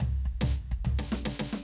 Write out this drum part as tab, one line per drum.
Snare     |---o---ooooo|
Floor tom |o--o--o-----|
Kick      |--o--o------|